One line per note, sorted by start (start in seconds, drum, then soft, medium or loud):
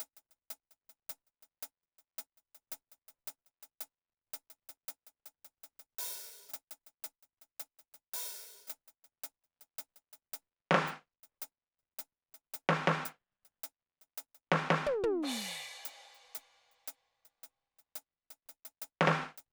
0.00 closed hi-hat loud
0.16 closed hi-hat soft
0.31 closed hi-hat soft
0.50 closed hi-hat loud
0.71 closed hi-hat soft
0.89 closed hi-hat soft
1.09 closed hi-hat loud
1.27 closed hi-hat soft
1.42 closed hi-hat soft
1.62 closed hi-hat loud
1.83 closed hi-hat soft
1.98 closed hi-hat soft
2.18 closed hi-hat loud
2.37 closed hi-hat soft
2.54 closed hi-hat medium
2.72 closed hi-hat loud
2.91 closed hi-hat soft
3.08 closed hi-hat medium
3.27 closed hi-hat loud
3.46 closed hi-hat soft
3.62 closed hi-hat medium
3.80 closed hi-hat loud
4.33 closed hi-hat loud
4.50 closed hi-hat medium
4.69 closed hi-hat medium
4.88 closed hi-hat loud
5.06 closed hi-hat medium
5.26 closed hi-hat medium
5.44 closed hi-hat medium
5.63 closed hi-hat medium
5.79 closed hi-hat medium
5.98 open hi-hat loud
6.49 hi-hat pedal loud
6.53 closed hi-hat loud
6.71 closed hi-hat medium
6.86 closed hi-hat medium
7.04 closed hi-hat loud
7.22 closed hi-hat soft
7.41 closed hi-hat soft
7.59 closed hi-hat loud
7.79 closed hi-hat soft
7.94 closed hi-hat medium
8.13 open hi-hat loud
8.67 closed hi-hat loud
8.67 hi-hat pedal loud
8.88 closed hi-hat soft
9.04 closed hi-hat soft
9.23 closed hi-hat loud
9.44 closed hi-hat soft
9.61 closed hi-hat medium
9.78 closed hi-hat loud
9.96 closed hi-hat soft
10.13 closed hi-hat medium
10.33 open hi-hat loud
10.71 snare loud
10.74 snare loud
10.87 hi-hat pedal loud
11.23 closed hi-hat soft
11.42 closed hi-hat loud
11.79 closed hi-hat soft
11.99 closed hi-hat loud
12.34 closed hi-hat medium
12.54 closed hi-hat loud
12.69 snare loud
12.87 snare loud
13.05 closed hi-hat loud
13.45 closed hi-hat soft
13.63 closed hi-hat loud
14.01 closed hi-hat soft
14.17 closed hi-hat loud
14.34 closed hi-hat soft
14.52 snare loud
14.70 snare loud
14.86 high tom loud
15.03 mid tom loud
15.22 crash medium
15.22 crash loud
15.85 closed hi-hat loud
16.14 closed hi-hat soft
16.35 closed hi-hat loud
16.71 closed hi-hat soft
16.87 closed hi-hat loud
17.25 closed hi-hat soft
17.43 closed hi-hat medium
17.78 closed hi-hat soft
17.95 closed hi-hat loud
18.12 closed hi-hat soft
18.30 closed hi-hat medium
18.49 closed hi-hat medium
18.65 closed hi-hat medium
18.82 closed hi-hat loud
19.01 snare loud
19.07 snare loud
19.37 closed hi-hat medium